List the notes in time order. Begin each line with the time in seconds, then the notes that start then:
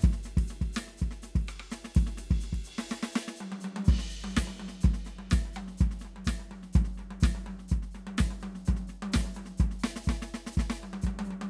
0.01 kick, hi-hat pedal, ride
0.13 snare
0.24 snare, hi-hat pedal, ride
0.38 kick, ride
0.48 snare, hi-hat pedal
0.62 kick, ride
0.74 snare, hi-hat pedal, ride
0.88 snare
0.98 hi-hat pedal, ride
1.02 kick
1.11 snare
1.23 snare, hi-hat pedal, ride
1.36 kick, ride
1.48 cross-stick, hi-hat pedal, ride
1.60 cross-stick
1.72 snare, hi-hat pedal
1.85 snare
1.95 kick, hi-hat pedal, ride
2.07 snare
2.18 snare, hi-hat pedal, ride
2.31 kick, ride
2.41 snare, hi-hat pedal
2.53 kick, ride
2.65 hi-hat pedal, ride
2.79 snare
2.89 snare, hi-hat pedal
3.03 snare
3.12 snare, hi-hat pedal
3.28 snare
3.37 hi-hat pedal
3.41 high tom
3.52 high tom
3.61 hi-hat pedal
3.65 high tom
3.77 high tom
3.85 kick, hi-hat pedal, crash
3.99 snare
4.10 hi-hat pedal
4.25 high tom
4.37 kick, snare, hi-hat pedal
4.48 high tom
4.55 hi-hat pedal
4.60 high tom
4.69 snare
4.81 kick, hi-hat pedal, high tom
4.94 snare
5.05 snare, hi-hat pedal, high tom
5.19 high tom
5.31 kick, snare, hi-hat pedal
5.46 high tom
5.54 hi-hat pedal, high tom
5.68 snare
5.78 kick, hi-hat pedal
5.82 high tom
5.92 snare
6.00 hi-hat pedal
6.05 high tom
6.17 high tom
6.25 kick, snare, hi-hat pedal
6.40 high tom
6.52 high tom
6.63 snare
6.74 kick, hi-hat pedal, high tom
6.85 snare
6.94 snare, hi-hat pedal
7.00 high tom
7.11 high tom
7.21 kick, snare, hi-hat pedal
7.36 high tom
7.43 hi-hat pedal
7.47 high tom
7.60 snare
7.69 kick, hi-hat pedal, high tom
7.83 snare
7.92 snare, hi-hat pedal, high tom
8.07 high tom
8.18 kick, snare, hi-hat pedal
8.31 high tom
8.41 hi-hat pedal, high tom
8.55 snare
8.66 kick, hi-hat pedal, high tom
8.77 snare
8.88 snare, hi-hat pedal
9.03 high tom
9.13 kick, snare, hi-hat pedal
9.20 snare
9.26 high tom
9.35 hi-hat pedal, high tom
9.46 snare
9.58 kick, hi-hat pedal, high tom
9.71 snare
9.80 hi-hat pedal
9.84 snare
9.97 snare
10.04 kick, hi-hat pedal
10.10 snare
10.22 snare
10.27 hi-hat pedal
10.35 snare
10.47 snare
10.53 hi-hat pedal
10.58 kick, snare
10.71 snare
10.84 high tom
11.02 kick, hi-hat pedal
11.07 high tom
11.20 high tom
11.25 hi-hat pedal
11.31 high tom
11.42 high tom